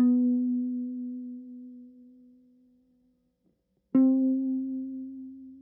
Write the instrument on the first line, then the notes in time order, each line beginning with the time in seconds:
electric guitar
0.00 B3
3.94 C4